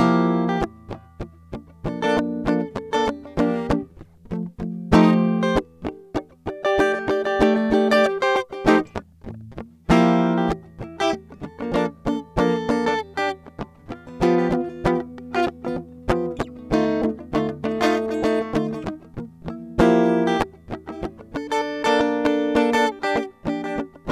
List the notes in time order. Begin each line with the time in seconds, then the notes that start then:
0.00 F3 A#3 E4 G4
0.51 G4
1.86 F3 A#3 D4
1.91 A4
2.04 A#3 D4 A4
2.19 A#3 D4 A4
2.48 F3 A#3 D4 A4
2.80 A4
2.95 A#3 D4 A4
3.08 A3 G4
3.27 D4
3.39 F3 A#3 D4 G4
3.72 F3 A#3 D4 G4
4.33 F3 A3
4.62 F3 A3
4.94 F3 A3 D#4 G4 C5
5.44 G4 C5
5.87 A3 D#4 G4
6.16 A3 D#4 G4
6.47 D#4 G4 D5
6.66 G4 D5
6.80 A3 D#4 G4 D5
6.96 G4
7.10 D#4 G4 D5
7.27 G4 D5
7.42 A3 D#4 G4 D5
7.56 G4 D5
7.73 A3 D#4 G4 D5
7.93 D#4 G4 D5
8.24 G4 C5
8.37 G4 C5
8.52 G4 C5
8.67 F3 A3 D#4 G4
8.71 C5
9.60 A#3
9.91 F3 A#3 E4 G4
10.39 G4
10.86 E4
11.02 E4 G4
11.34 D4
11.45 C#4 A4
11.60 A#3 D4 A4
11.74 F3 A#3 D4
11.79 A4
12.09 A#3 D4 A4
12.39 F3 A#3 D4 A4
12.70 A#3 D4 A4
12.88 A#3 D4 A4
13.19 D4 G4
13.91 B3 F4
14.23 F3 B3 F4 G4
14.40 F4 G4
14.54 B3 F4
14.68 F4
14.87 F3 B3 F4 G4
15.36 B3 F4 G4
15.66 B3 F4
16.10 F3 B3 F4 G4
16.42 A#3
16.72 D#3 A3 D#4 F4
17.05 A3 D#4 F4
17.21 D4 F4
17.35 D#3 A3 D#4 F4
17.49 D#4 F4
17.66 A3 D#4 F4
17.82 A3 D#4 F4
18.10 D#4 F4
18.25 A3 D#4 F4
18.40 F4
18.55 D#3 A3 D#4 F4
18.75 A3 D#4
19.19 E3 A#3
19.48 F3 A#3 E4
19.80 F3 A#3 E4 G4
20.28 E4 G4
20.73 F3 D#4 G4
20.89 E4 G4
21.05 F3
21.37 D4 A4
21.53 D4 A4
21.86 A#3 D4 A4
22.01 D4 A4
22.27 D4 A4
22.57 A#3 D4 A4
22.75 D4 A4
23.05 D4 G4
23.17 A#3 G4
23.47 F3 A#3 D4 G4
23.66 D4 G4
23.80 A#3